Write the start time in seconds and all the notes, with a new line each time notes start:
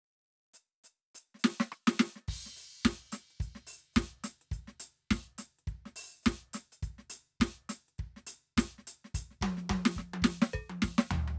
0.54 hi-hat pedal
0.84 hi-hat pedal
1.15 hi-hat pedal
1.34 snare
1.39 hi-hat pedal
1.44 snare
1.60 snare
1.72 cross-stick
1.87 snare, hi-hat pedal
1.99 snare
2.16 snare
2.28 kick, crash
2.46 snare
2.56 open hi-hat
2.84 kick, snare, hi-hat pedal
3.12 closed hi-hat, snare
3.30 closed hi-hat
3.40 closed hi-hat, kick
3.55 snare
3.67 open hi-hat
3.93 kick, snare, hi-hat pedal
4.24 closed hi-hat, snare
4.41 closed hi-hat
4.51 closed hi-hat, kick
4.68 snare
4.80 closed hi-hat
5.11 kick, snare
5.38 closed hi-hat, snare
5.59 closed hi-hat
5.67 kick
5.85 snare
5.96 open hi-hat
6.23 kick, snare, hi-hat pedal
6.53 closed hi-hat, snare
6.72 closed hi-hat
6.83 closed hi-hat, kick
6.98 snare
7.10 closed hi-hat
7.40 kick, snare
7.69 closed hi-hat, snare
7.88 closed hi-hat
7.99 kick
8.16 snare
8.27 closed hi-hat
8.57 closed hi-hat, kick, snare
8.78 snare
8.87 closed hi-hat
9.04 snare
9.14 closed hi-hat, kick
9.31 snare
9.41 kick, high tom
9.57 snare
9.69 kick, hi-hat pedal, high tom
9.85 snare
9.96 kick, snare
10.14 high tom
10.22 kick, snare
10.42 snare
10.53 kick, percussion
10.70 high tom
10.82 kick, snare
10.98 snare
11.11 kick, floor tom
11.28 floor tom